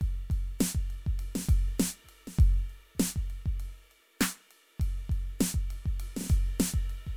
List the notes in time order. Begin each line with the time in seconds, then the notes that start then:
0.01 kick, ride
0.30 kick, ride
0.59 snare, hi-hat pedal, ride
0.75 kick
0.90 ride
1.06 kick
1.19 ride
1.35 snare
1.39 snare
1.41 snare
1.44 snare
1.49 kick, ride
1.78 snare, hi-hat pedal, ride
2.04 kick
2.09 ride
2.27 snare
2.39 kick, ride
2.69 ride
2.95 kick, hi-hat pedal
3.00 snare, ride
3.16 kick
3.30 ride
3.46 kick
3.60 ride
3.91 ride
4.19 snare, hi-hat pedal, ride
4.51 ride
4.80 kick, ride
5.09 kick, ride
5.39 snare, hi-hat pedal, ride
5.54 kick
5.70 ride
5.86 kick
6.00 ride
6.16 snare
6.21 snare
6.24 snare
6.26 kick, snare, ride
6.59 snare, hi-hat pedal, ride
6.74 kick
6.90 ride
7.07 kick